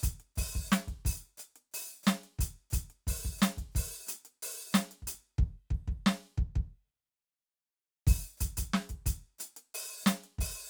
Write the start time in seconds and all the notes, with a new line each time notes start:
0.01 closed hi-hat, kick, hi-hat pedal
0.21 closed hi-hat
0.36 open hi-hat, kick, hi-hat pedal
0.56 kick
0.69 hi-hat pedal
0.73 closed hi-hat, snare
0.88 kick, closed hi-hat
1.06 open hi-hat, kick
1.38 closed hi-hat, hi-hat pedal
1.57 closed hi-hat
1.72 open hi-hat, hi-hat pedal
2.04 snare, hi-hat pedal
2.08 closed hi-hat
2.24 closed hi-hat
2.40 open hi-hat, kick
2.71 closed hi-hat, kick, hi-hat pedal
2.91 closed hi-hat
3.08 open hi-hat, kick
3.26 kick
3.39 snare, hi-hat pedal
3.43 closed hi-hat
3.58 kick, closed hi-hat
3.73 kick, hi-hat pedal
3.77 open hi-hat
4.08 closed hi-hat, hi-hat pedal
4.26 closed hi-hat
4.43 open hi-hat
4.73 closed hi-hat, snare, hi-hat pedal
4.92 closed hi-hat
5.03 kick
5.08 open hi-hat
5.39 kick
5.44 ride
5.71 kick
5.76 crash, ride
5.88 kick
5.93 crash, ride
6.07 snare
6.38 kick
6.56 kick
6.62 ride
8.08 open hi-hat, kick
8.38 closed hi-hat, kick, hi-hat pedal
8.58 closed hi-hat, kick
8.74 snare
8.90 kick, closed hi-hat
9.07 open hi-hat, kick
9.39 closed hi-hat, hi-hat pedal
9.57 closed hi-hat
9.75 open hi-hat
10.04 closed hi-hat, snare, hi-hat pedal
10.25 closed hi-hat
10.39 open hi-hat, kick